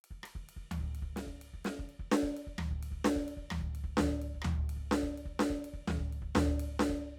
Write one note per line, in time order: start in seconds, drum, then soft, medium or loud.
0.04 ride soft
0.10 kick soft
0.23 cross-stick medium
0.23 ride medium
0.35 kick soft
0.49 ride medium
0.56 kick soft
0.71 floor tom loud
0.71 ride medium
0.80 kick soft
0.95 ride soft
1.02 kick soft
1.16 snare medium
1.16 ride medium
1.26 kick soft
1.41 ride soft
1.53 kick soft
1.64 snare medium
1.64 ride soft
1.79 kick soft
1.89 ride soft
1.99 kick soft
2.12 snare loud
2.12 ride medium
2.23 kick soft
2.37 ride soft
2.47 kick soft
2.58 cross-stick medium
2.58 floor tom loud
2.71 kick soft
2.83 ride medium
2.92 kick soft
3.04 snare loud
3.04 ride medium
3.16 kick soft
3.28 ride soft
3.37 kick soft
3.50 cross-stick medium
3.50 floor tom loud
3.61 kick soft
3.75 ride soft
3.84 kick soft
3.97 snare loud
3.97 floor tom loud
4.09 kick soft
4.22 ride soft
4.34 kick soft
4.42 cross-stick medium
4.42 floor tom loud
4.56 kick soft
4.69 ride medium
4.76 kick soft
4.91 snare loud
4.91 ride soft
5.03 kick soft
5.17 ride soft
5.25 kick soft
5.39 snare loud
5.39 ride soft
5.50 kick soft
5.64 ride soft
5.73 kick soft
5.87 snare medium
5.87 floor tom loud
5.98 kick soft
6.12 ride soft
6.22 kick soft
6.35 snare loud
6.35 floor tom loud
6.47 kick soft
6.59 ride medium
6.66 kick soft
6.79 snare loud
6.79 ride soft
6.89 kick soft